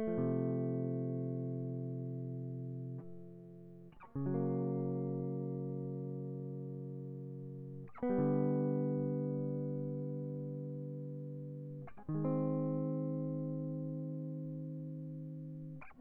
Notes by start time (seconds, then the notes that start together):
0.00 A3
0.09 F3
0.20 C3
4.17 C#3
4.27 F#3
4.35 A#3
8.03 B3
8.11 G3
8.20 D3
12.10 D#3
12.16 G#3
12.25 C4